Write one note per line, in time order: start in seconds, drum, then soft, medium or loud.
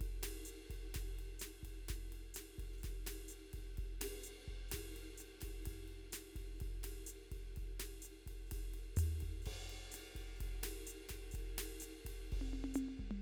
0.01 kick soft
0.01 ride soft
0.07 kick soft
0.23 snare soft
0.23 ride medium
0.45 hi-hat pedal medium
0.45 ride soft
0.70 kick soft
0.70 ride soft
0.75 kick soft
0.94 kick soft
0.94 snare soft
0.94 ride medium
1.02 kick soft
1.19 ride soft
1.40 snare soft
1.40 hi-hat pedal medium
1.40 ride medium
1.63 kick soft
1.63 ride soft
1.68 kick soft
1.89 kick soft
1.89 snare soft
1.89 ride medium
1.96 kick soft
2.12 ride soft
2.34 snare soft
2.34 hi-hat pedal medium
2.34 ride medium
2.59 kick soft
2.59 ride soft
2.64 kick soft
2.73 snare soft
2.78 hi-hat pedal soft
2.84 kick soft
2.84 snare soft
2.84 ride soft
2.90 kick soft
3.07 snare soft
3.07 ride medium
3.29 hi-hat pedal medium
3.29 ride soft
3.53 kick soft
3.53 ride soft
3.59 kick soft
3.78 kick soft
3.78 ride soft
3.84 kick soft
4.01 snare soft
4.01 ride medium
4.24 hi-hat pedal medium
4.48 kick soft
4.53 kick soft
4.69 snare soft
4.69 hi-hat pedal soft
4.69 ride medium
4.74 kick soft
4.80 kick soft
4.96 ride soft
5.18 hi-hat pedal medium
5.18 ride soft
5.41 kick soft
5.41 snare soft
5.41 ride medium
5.48 kick soft
5.63 snare soft
5.63 hi-hat pedal soft
5.63 ride medium
5.67 kick soft
5.73 kick soft
5.88 ride soft
6.13 snare soft
6.13 hi-hat pedal medium
6.13 ride medium
6.36 kick soft
6.36 ride soft
6.40 kick soft
6.40 snare soft
6.56 hi-hat pedal soft
6.61 kick soft
6.61 ride soft
6.67 kick soft
6.83 snare soft
6.83 ride medium
7.07 hi-hat pedal medium
7.07 ride soft
7.32 kick soft
7.32 ride soft
7.37 kick soft
7.56 kick soft
7.56 ride soft
7.63 kick soft
7.80 snare soft
7.80 ride medium
8.02 hi-hat pedal medium
8.02 ride soft
8.27 kick soft
8.27 ride soft
8.32 kick soft
8.47 hi-hat pedal soft
8.51 kick soft
8.51 snare soft
8.51 ride medium
8.57 kick soft
8.74 ride soft
8.97 floor tom medium
8.97 hi-hat pedal medium
8.97 ride medium
9.21 kick soft
9.21 ride soft
9.28 kick soft
9.42 hi-hat pedal soft
9.42 ride soft
9.47 kick soft
9.47 snare soft
9.53 kick soft
9.70 ride soft
9.92 snare soft
9.92 hi-hat pedal medium
9.92 ride medium
10.16 kick soft
10.16 ride soft
10.21 kick soft
10.36 hi-hat pedal soft
10.41 kick soft
10.41 ride soft
10.46 kick soft
10.63 snare soft
10.63 ride medium
10.87 hi-hat pedal medium
10.87 ride soft
11.09 kick soft
11.09 snare soft
11.09 ride medium
11.16 kick soft
11.31 kick soft
11.31 hi-hat pedal medium
11.31 ride soft
11.39 kick soft
11.39 snare soft
11.58 snare soft
11.58 ride medium
11.80 hi-hat pedal medium
11.80 ride soft
12.05 kick soft
12.05 ride medium
12.11 kick soft
12.32 kick soft
12.32 ride soft
12.38 kick soft
12.38 high tom medium
12.54 high tom medium
12.64 high tom medium
12.74 hi-hat pedal medium
12.74 high tom loud
12.89 high tom soft
12.99 kick soft
12.99 mid tom soft
13.04 kick soft
13.11 mid tom medium